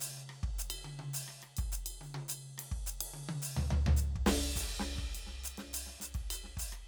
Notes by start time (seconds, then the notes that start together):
0.01 hi-hat pedal, ride bell
0.30 cross-stick
0.43 kick
0.59 hi-hat pedal
0.70 ride bell
0.85 high tom
0.99 high tom
1.14 hi-hat pedal, ride bell
1.28 cross-stick
1.42 cross-stick, ride
1.57 kick, ride bell
1.72 hi-hat pedal
1.86 ride bell
2.01 hi-hat pedal, high tom
2.15 high tom
2.29 hi-hat pedal, ride bell
2.58 cross-stick, ride
2.72 kick
2.87 hi-hat pedal
3.01 ride
3.14 high tom
3.29 high tom
3.42 hi-hat pedal
3.57 floor tom
3.71 floor tom
3.87 floor tom
3.97 hi-hat pedal
4.16 kick
4.26 snare, crash
4.56 kick, hi-hat pedal, ride
4.80 snare, hi-hat pedal
4.96 kick, snare
5.15 hi-hat pedal, ride bell
5.27 snare
5.44 hi-hat pedal, ride
5.58 snare, ride
5.74 hi-hat pedal, ride bell
5.87 snare
6.00 snare, hi-hat pedal, ride
6.15 kick, ride
6.31 hi-hat pedal, ride bell
6.44 snare
6.57 kick, hi-hat pedal, ride
6.73 cross-stick, ride